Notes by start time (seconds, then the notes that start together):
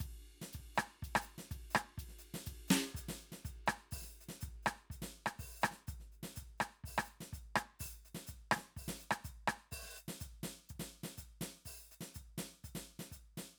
0.06 kick, ride
0.11 snare
0.16 snare
0.41 snare
0.53 kick, ride
0.59 kick
0.75 cross-stick, hi-hat pedal
1.02 kick, ride
1.15 cross-stick
1.21 hi-hat pedal
1.38 snare
1.51 kick, ride
1.70 hi-hat pedal
1.75 cross-stick
1.98 kick, ride
2.09 snare
2.18 hi-hat pedal, ride
2.34 snare
2.46 kick, ride
2.52 kick
2.68 snare, hi-hat pedal
2.94 closed hi-hat, kick
3.08 snare
3.17 closed hi-hat, hi-hat pedal
3.32 snare
3.44 closed hi-hat, kick
3.66 cross-stick, hi-hat pedal
3.91 open hi-hat, kick
4.02 snare
4.20 hi-hat pedal
4.28 snare
4.40 closed hi-hat, kick
4.48 kick
4.62 cross-stick, hi-hat pedal
4.90 closed hi-hat, kick
5.02 snare
5.26 cross-stick
5.38 open hi-hat, kick
5.44 kick
5.61 cross-stick, hi-hat pedal
5.71 snare
5.87 closed hi-hat, kick
5.99 snare
6.11 open hi-hat, hi-hat pedal
6.23 snare
6.35 closed hi-hat, kick
6.42 kick
6.57 cross-stick, hi-hat pedal
6.84 open hi-hat, kick
6.89 kick
6.98 cross-stick
7.04 hi-hat pedal
7.10 closed hi-hat
7.20 snare
7.33 closed hi-hat, kick
7.56 cross-stick
7.79 open hi-hat, kick
7.85 kick
7.92 snare
8.03 hi-hat pedal, open hi-hat
8.14 snare
8.26 closed hi-hat, kick
8.33 kick
8.51 cross-stick
8.56 snare
8.76 open hi-hat, kick
8.88 snare
8.99 closed hi-hat, hi-hat pedal
9.11 cross-stick
9.24 closed hi-hat, kick
9.47 cross-stick
9.71 open hi-hat, kick
9.77 kick
9.83 snare
9.95 open hi-hat, hi-hat pedal
10.08 snare
10.20 closed hi-hat, kick
10.43 snare, hi-hat pedal
10.69 kick, closed hi-hat
10.79 snare
10.89 hi-hat pedal
11.03 snare
11.17 closed hi-hat, kick
11.41 snare
11.65 open hi-hat, kick
11.91 hi-hat pedal
12.01 snare
12.14 closed hi-hat, kick
12.38 snare
12.63 closed hi-hat, kick
12.75 snare
12.99 snare
13.11 closed hi-hat, kick
13.37 snare